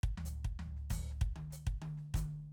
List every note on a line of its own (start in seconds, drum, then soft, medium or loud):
0.03 kick soft
0.18 floor tom medium
0.26 hi-hat pedal medium
0.45 kick soft
0.59 floor tom medium
0.76 snare soft
0.90 kick soft
0.90 floor tom medium
0.90 hi-hat pedal medium
1.11 snare soft
1.21 kick soft
1.36 high tom medium
1.51 snare soft
1.51 hi-hat pedal medium
1.67 kick soft
1.82 high tom medium
1.97 snare soft
2.14 kick soft
2.14 hi-hat pedal medium
2.14 high tom medium